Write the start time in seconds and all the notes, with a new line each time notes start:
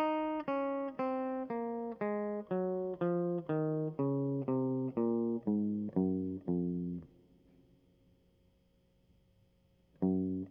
0.00 D#4
0.49 C#4
1.00 C4
1.51 A#3
2.02 G#3
2.52 F#3
3.03 F3
3.51 D#3
4.01 C#3
4.50 C3
4.99 A#2
5.49 G#2
5.99 F#2
6.51 F2
10.05 F#2